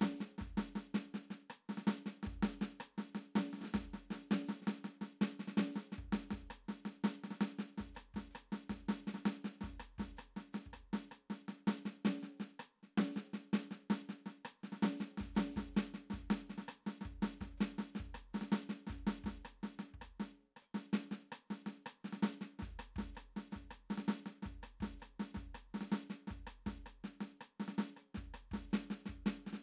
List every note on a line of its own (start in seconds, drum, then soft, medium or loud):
0.01 snare medium
0.20 snare soft
0.20 hi-hat pedal soft
0.38 kick soft
0.38 snare soft
0.41 snare soft
0.57 snare medium
0.57 hi-hat pedal soft
0.75 snare soft
0.94 snare medium
0.94 hi-hat pedal soft
1.14 snare soft
1.30 snare soft
1.30 hi-hat pedal soft
1.50 cross-stick medium
1.69 snare soft
1.69 hi-hat pedal soft
1.77 snare soft
1.87 snare medium
2.06 snare soft
2.06 hi-hat pedal soft
2.23 kick soft
2.23 snare soft
2.42 snare medium
2.42 hi-hat pedal soft
2.61 snare medium
2.80 cross-stick medium
2.80 hi-hat pedal soft
2.98 snare soft
3.15 snare soft
3.15 hi-hat pedal soft
3.35 snare medium
3.53 snare soft
3.53 hi-hat pedal soft
3.58 snare soft
3.61 snare soft
3.64 snare soft
3.74 kick soft
3.74 snare medium
3.93 snare soft
3.93 hi-hat pedal soft
4.10 snare soft
4.12 snare soft
4.31 snare medium
4.31 hi-hat pedal soft
4.49 snare soft
4.62 snare soft
4.67 snare medium
4.67 hi-hat pedal soft
4.84 snare soft
5.01 snare soft
5.01 hi-hat pedal soft
5.21 snare medium
5.39 snare soft
5.39 hi-hat pedal soft
5.47 snare soft
5.57 snare medium
5.76 snare soft
5.80 hi-hat pedal soft
5.92 snare soft
5.98 kick soft
6.12 snare medium
6.12 hi-hat pedal soft
6.30 kick soft
6.30 snare soft
6.50 cross-stick medium
6.50 hi-hat pedal soft
6.68 snare soft
6.85 snare soft
6.85 hi-hat pedal soft
7.04 snare medium
7.24 snare soft
7.24 hi-hat pedal soft
7.30 snare soft
7.41 snare medium
7.59 snare soft
7.59 hi-hat pedal soft
7.78 kick soft
7.78 snare soft
7.94 cross-stick medium
7.94 hi-hat pedal soft
8.14 kick soft
8.14 snare soft
8.30 hi-hat pedal soft
8.35 cross-stick medium
8.52 snare soft
8.69 kick soft
8.69 snare soft
8.69 hi-hat pedal soft
8.88 snare medium
9.07 snare soft
9.07 hi-hat pedal soft
9.14 snare soft
9.25 snare medium
9.44 snare soft
9.44 hi-hat pedal soft
9.61 kick soft
9.61 snare soft
9.64 snare soft
9.80 cross-stick medium
9.80 hi-hat pedal soft
9.98 kick soft
9.98 snare soft
10.16 cross-stick medium
10.16 hi-hat pedal soft
10.36 snare soft
10.53 snare soft
10.53 hi-hat pedal soft
10.66 kick soft
10.73 cross-stick medium
10.93 snare medium
10.93 hi-hat pedal soft
11.11 cross-stick soft
11.30 snare soft
11.30 hi-hat pedal soft
11.48 snare soft
11.67 snare medium
11.85 snare soft
12.05 snare medium
12.23 snare soft
12.40 snare soft
12.40 hi-hat pedal soft
12.59 cross-stick medium
12.83 snare soft
12.97 snare medium
13.16 snare soft
13.33 snare soft
13.53 snare medium
13.71 snare soft
13.90 snare medium
14.09 snare soft
14.26 snare soft
14.45 cross-stick medium
14.63 snare soft
14.72 snare soft
14.82 snare medium
15.00 snare soft
15.17 snare soft
15.19 kick soft
15.19 snare soft
15.35 snare medium
15.35 hi-hat pedal soft
15.56 kick soft
15.56 snare soft
15.74 snare medium
15.74 hi-hat pedal soft
15.94 snare soft
16.10 snare soft
16.12 kick soft
16.12 snare soft
16.12 hi-hat pedal soft
16.30 snare medium
16.49 snare soft
16.49 hi-hat pedal soft
16.58 snare soft
16.68 cross-stick medium
16.86 snare soft
16.86 hi-hat pedal soft
17.01 snare soft
17.05 kick soft
17.21 snare medium
17.21 hi-hat pedal soft
17.41 kick soft
17.41 snare soft
17.57 snare medium
17.57 hi-hat pedal soft
17.78 snare soft
17.94 snare soft
17.94 hi-hat pedal soft
18.00 kick soft
18.14 cross-stick medium
18.33 snare soft
18.33 hi-hat pedal soft
18.41 snare soft
18.52 snare medium
18.69 snare soft
18.69 hi-hat pedal soft
18.87 snare soft
18.88 kick soft
18.88 snare soft
19.07 snare medium
19.07 hi-hat pedal soft
19.24 kick soft
19.24 snare soft
19.44 cross-stick medium
19.44 hi-hat pedal soft
19.63 snare soft
19.79 snare soft
19.79 hi-hat pedal soft
19.94 kick soft
20.01 cross-stick medium
20.20 snare soft
20.20 hi-hat pedal soft
20.56 cross-stick soft
20.61 hi-hat pedal soft
20.74 snare soft
20.93 snare medium
20.93 hi-hat pedal soft
21.11 snare soft
21.31 cross-stick medium
21.31 hi-hat pedal soft
21.50 snare soft
21.66 snare soft
21.66 hi-hat pedal soft
21.86 cross-stick medium
22.04 snare soft
22.04 hi-hat pedal soft
22.12 snare soft
22.22 snare medium
22.41 snare soft
22.41 hi-hat pedal soft
22.59 snare soft
22.61 kick soft
22.61 snare soft
22.78 cross-stick medium
22.78 hi-hat pedal soft
22.96 kick soft
22.96 snare soft
23.14 cross-stick medium
23.14 hi-hat pedal soft
23.36 snare soft
23.51 snare soft
23.51 hi-hat pedal soft
23.55 kick soft
23.71 cross-stick medium
23.89 snare soft
23.89 hi-hat pedal soft
23.97 snare soft
24.08 snare medium
24.26 snare soft
24.26 hi-hat pedal soft
24.42 kick soft
24.42 snare soft
24.62 cross-stick medium
24.62 hi-hat pedal soft
24.80 kick soft
24.80 snare soft
24.99 cross-stick soft
24.99 hi-hat pedal soft
25.19 snare soft
25.34 kick soft
25.34 snare soft
25.34 hi-hat pedal soft
25.54 cross-stick medium
25.74 snare soft
25.74 hi-hat pedal soft
25.81 snare soft
25.92 snare medium
26.10 snare soft
26.10 hi-hat pedal soft
26.27 kick soft
26.27 snare soft
26.47 cross-stick medium
26.47 hi-hat pedal soft
26.66 kick soft
26.66 snare soft
26.85 cross-stick soft
26.85 hi-hat pedal soft
27.04 snare soft
27.20 snare soft
27.20 hi-hat pedal soft
27.41 cross-stick medium
27.60 snare soft
27.60 hi-hat pedal soft
27.68 snare soft
27.78 snare medium
27.96 cross-stick soft
27.96 hi-hat pedal soft
28.14 kick soft
28.14 snare soft
28.34 cross-stick medium
28.34 hi-hat pedal soft
28.51 kick soft
28.51 snare soft
28.70 snare medium
28.70 hi-hat pedal soft
28.90 snare soft
29.05 kick soft
29.05 snare soft
29.05 hi-hat pedal soft
29.26 snare medium
29.46 snare soft
29.46 hi-hat pedal soft
29.53 snare soft